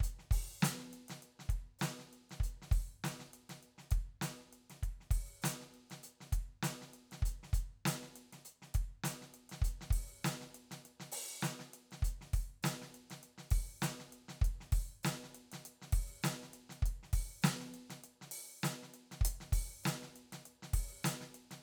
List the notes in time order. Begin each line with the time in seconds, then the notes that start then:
0.01 closed hi-hat, kick
0.19 snare
0.31 open hi-hat, kick
0.60 snare, hi-hat pedal
0.65 closed hi-hat
0.79 snare
0.93 closed hi-hat
1.09 snare, closed hi-hat
1.23 closed hi-hat
1.40 snare
1.49 kick, closed hi-hat
1.79 closed hi-hat, snare, hi-hat pedal
1.99 snare
2.13 closed hi-hat
2.30 snare, closed hi-hat
2.40 closed hi-hat, kick
2.62 snare
2.72 kick, open hi-hat
3.04 open hi-hat, snare, hi-hat pedal
3.20 snare
3.34 closed hi-hat
3.50 snare, closed hi-hat
3.63 closed hi-hat
3.78 snare
3.91 kick, closed hi-hat
4.22 closed hi-hat, snare
4.41 snare
4.53 closed hi-hat
4.70 snare, closed hi-hat
4.83 kick, closed hi-hat
5.01 snare
5.11 kick, open hi-hat
5.42 closed hi-hat, snare, hi-hat pedal
5.61 snare
5.74 closed hi-hat
5.90 snare, closed hi-hat
6.04 closed hi-hat
6.21 snare
6.33 kick, closed hi-hat
6.63 closed hi-hat, snare
6.82 snare
6.94 closed hi-hat
7.12 snare, closed hi-hat
7.23 closed hi-hat, kick
7.43 snare
7.53 closed hi-hat, kick
7.86 closed hi-hat, snare, hi-hat pedal
8.03 snare
8.16 closed hi-hat
8.33 snare, closed hi-hat
8.45 closed hi-hat
8.62 snare
8.75 kick, closed hi-hat
8.84 kick
9.04 closed hi-hat, snare
9.22 snare
9.34 closed hi-hat
9.50 snare, closed hi-hat
9.62 closed hi-hat, kick
9.81 snare
9.91 kick, open hi-hat
10.25 closed hi-hat, snare, hi-hat pedal
10.41 snare
10.55 closed hi-hat
10.71 snare, closed hi-hat
10.86 closed hi-hat
11.00 snare
11.12 open hi-hat
11.42 closed hi-hat, snare, hi-hat pedal
11.60 snare
11.74 closed hi-hat
11.91 snare, closed hi-hat
12.03 closed hi-hat, kick
12.21 snare
12.34 kick, open hi-hat
12.63 closed hi-hat, snare, hi-hat pedal
12.82 snare
12.95 closed hi-hat
13.10 snare, closed hi-hat
13.23 closed hi-hat
13.38 snare
13.51 kick, open hi-hat
13.82 closed hi-hat, snare, hi-hat pedal
14.00 snare
14.13 closed hi-hat
14.29 snare
14.42 kick, closed hi-hat
14.61 snare
14.72 kick, open hi-hat
15.04 closed hi-hat, snare, hi-hat pedal
15.24 snare
15.35 closed hi-hat
15.52 snare, closed hi-hat
15.66 closed hi-hat
15.82 snare
15.93 kick, open hi-hat
16.23 closed hi-hat, snare, hi-hat pedal
16.43 snare
16.54 closed hi-hat
16.70 snare, closed hi-hat
16.83 kick, closed hi-hat
17.03 snare
17.13 kick, open hi-hat
17.43 closed hi-hat, snare, hi-hat pedal
17.60 snare
17.74 closed hi-hat
17.90 snare, closed hi-hat
18.04 closed hi-hat
18.22 snare
18.32 open hi-hat
18.63 closed hi-hat, snare, hi-hat pedal
18.83 snare
18.94 closed hi-hat
19.12 snare, closed hi-hat
19.21 kick, closed hi-hat
19.41 snare
19.53 kick, open hi-hat
19.84 closed hi-hat, snare, hi-hat pedal
20.03 snare
20.16 closed hi-hat
20.33 snare, closed hi-hat
20.46 closed hi-hat
20.63 snare
20.74 kick, open hi-hat
21.04 closed hi-hat, snare, hi-hat pedal
21.21 snare
21.35 closed hi-hat
21.51 snare, closed hi-hat